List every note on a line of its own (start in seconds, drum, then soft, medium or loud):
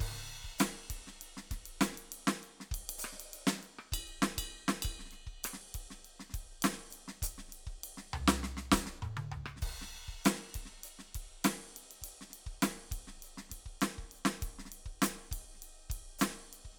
0.01 kick medium
0.01 crash medium
0.08 kick soft
0.08 high tom soft
0.45 kick soft
0.59 snare loud
0.59 hi-hat pedal medium
0.59 ride loud
0.90 kick soft
0.90 ride medium
1.07 snare soft
1.22 ride medium
1.37 snare soft
1.51 kick soft
1.51 snare soft
1.51 ride medium
1.58 kick soft
1.66 ride medium
1.81 snare loud
1.81 hi-hat pedal medium
1.93 snare soft
1.98 ride medium
2.12 ride medium
2.27 snare loud
2.39 hi-hat pedal soft
2.43 ride soft
2.60 snare soft
2.72 kick soft
2.72 ride loud
2.79 kick soft
2.79 snare soft
2.90 ride loud
2.99 hi-hat pedal loud
3.05 cross-stick medium
3.13 snare soft
3.20 ride medium
3.34 ride medium
3.47 snare loud
3.62 hi-hat pedal soft
3.62 ride soft
3.79 cross-stick medium
3.93 kick soft
3.93 hi-hat pedal soft
3.93 ride bell loud
4.00 kick soft
4.08 ride soft
4.22 snare loud
4.38 kick soft
4.38 ride bell loud
4.68 snare medium
4.83 kick medium
4.83 hi-hat pedal soft
4.83 ride bell loud
4.93 kick soft
5.00 snare soft
5.06 snare soft
5.11 snare soft
5.11 ride soft
5.27 kick soft
5.44 cross-stick medium
5.44 hi-hat pedal medium
5.44 ride loud
5.54 snare soft
5.75 kick soft
5.75 ride medium
5.81 kick soft
5.91 snare soft
6.05 ride soft
6.20 snare soft
6.34 kick soft
6.34 ride medium
6.41 kick soft
6.63 snare loud
6.63 hi-hat pedal medium
6.63 ride loud
6.73 snare soft
6.91 hi-hat pedal soft
6.91 ride medium
7.08 snare medium
7.22 kick soft
7.22 hi-hat pedal loud
7.22 ride medium
7.29 kick soft
7.38 snare soft
7.53 ride medium
7.59 snare soft
7.67 kick soft
7.67 snare soft
7.73 kick soft
7.84 ride loud
7.98 snare soft
8.14 floor tom loud
8.28 snare loud
8.44 snare medium
8.57 snare medium
8.72 kick soft
8.72 snare loud
8.72 hi-hat pedal medium
8.86 snare medium
9.03 mid tom loud
9.17 high tom medium
9.32 floor tom medium
9.46 cross-stick medium
9.57 snare soft
9.61 kick medium
9.61 hi-hat pedal soft
9.61 crash medium
9.71 kick soft
9.76 kick soft
9.82 snare soft
9.95 snare soft
10.08 kick soft
10.14 kick soft
10.25 snare loud
10.25 hi-hat pedal medium
10.25 ride loud
10.36 snare soft
10.55 kick soft
10.55 ride medium
10.62 kick soft
10.66 snare soft
10.84 hi-hat pedal medium
10.84 ride medium
10.99 snare soft
11.15 kick soft
11.15 ride medium
11.21 kick soft
11.44 snare loud
11.44 hi-hat pedal soft
11.44 ride loud
11.77 snare soft
11.77 ride medium
11.84 snare soft
11.88 snare soft
11.88 ride medium
12.02 kick soft
12.02 hi-hat pedal soft
12.02 ride medium
12.21 snare soft
12.30 snare soft
12.30 ride medium
12.47 kick soft
12.63 snare loud
12.63 hi-hat pedal medium
12.63 ride loud
12.77 snare soft
12.92 kick soft
12.92 ride medium
12.99 kick soft
13.08 snare soft
13.23 hi-hat pedal soft
13.23 ride medium
13.38 snare soft
13.50 kick soft
13.50 snare soft
13.50 ride medium
13.66 kick soft
13.81 snare loud
13.81 hi-hat pedal medium
13.81 ride medium
13.96 kick soft
13.96 snare soft
14.04 kick soft
14.12 hi-hat pedal soft
14.12 ride soft
14.25 snare loud
14.41 kick soft
14.41 hi-hat pedal soft
14.41 ride medium
14.50 kick soft
14.59 snare soft
14.66 snare soft
14.72 ride medium
14.86 kick soft
15.02 snare loud
15.02 hi-hat pedal loud
15.02 ride medium
15.13 snare soft
15.32 kick soft
15.32 ride medium
15.39 kick soft
15.55 snare soft
15.62 snare soft
15.62 ride medium
15.90 kick soft
15.90 ride medium
15.97 kick soft
16.19 snare loud
16.19 hi-hat pedal medium
16.19 ride loud
16.31 snare soft
16.53 ride medium
16.65 kick soft
16.73 snare soft